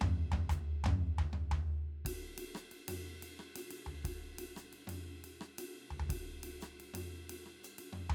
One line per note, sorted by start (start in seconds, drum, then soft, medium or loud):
0.01 floor tom loud
0.01 mid tom loud
0.32 floor tom loud
0.32 mid tom loud
0.49 floor tom loud
0.49 hi-hat pedal medium
0.84 floor tom loud
0.84 mid tom loud
1.18 floor tom loud
1.33 mid tom medium
1.51 floor tom loud
2.05 kick medium
2.05 ride loud
2.38 ride loud
2.55 cross-stick medium
2.55 hi-hat pedal medium
2.71 ride medium
2.88 mid tom medium
2.88 ride loud
3.22 ride medium
3.39 cross-stick soft
3.56 hi-hat pedal medium
3.56 ride loud
3.71 ride medium
3.86 floor tom medium
4.04 kick medium
4.04 ride medium
4.20 ride soft
4.38 ride loud
4.56 cross-stick medium
4.56 hi-hat pedal medium
4.73 ride medium
4.87 mid tom medium
4.87 ride medium
5.24 ride medium
5.41 cross-stick medium
5.58 hi-hat pedal medium
5.58 ride loud
5.90 floor tom medium
6.00 floor tom medium
6.09 kick medium
6.09 ride loud
6.43 ride loud
6.61 cross-stick medium
6.61 hi-hat pedal medium
6.80 ride medium
6.94 mid tom medium
6.94 ride loud
7.29 ride loud
7.46 cross-stick soft
7.63 hi-hat pedal medium
7.63 ride bell medium
7.78 ride medium
7.93 mid tom medium
8.10 floor tom loud